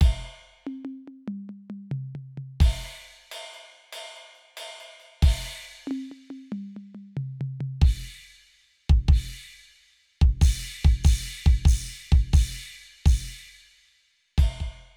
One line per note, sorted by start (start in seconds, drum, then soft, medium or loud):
0.02 kick loud
0.02 ride loud
0.68 high tom loud
0.86 high tom loud
1.09 high tom medium
1.29 mid tom loud
1.51 mid tom medium
1.71 mid tom medium
1.93 floor tom loud
2.16 floor tom medium
2.39 floor tom medium
2.62 kick loud
2.62 ride loud
2.62 crash loud
3.33 ride loud
3.55 ride medium
3.72 ride soft
3.94 ride loud
4.17 ride soft
4.36 ride soft
4.58 ride loud
4.82 ride medium
5.01 ride soft
5.24 kick loud
5.24 ride loud
5.24 crash loud
5.89 high tom loud
5.92 high tom loud
6.13 high tom medium
6.32 high tom medium
6.53 mid tom loud
6.78 mid tom medium
6.96 mid tom medium
7.18 floor tom loud
7.42 floor tom loud
7.62 floor tom loud
7.83 kick loud
7.83 crash medium
8.91 kick loud
9.10 kick loud
9.10 crash loud
10.23 kick loud
10.43 kick loud
10.43 crash loud
10.86 kick loud
11.05 kick loud
11.05 crash loud
11.47 kick loud
11.67 kick loud
11.67 crash loud
12.13 kick loud
12.35 kick loud
12.35 crash loud
13.07 kick loud
13.07 crash loud
14.39 kick loud
14.39 ride loud
14.62 kick medium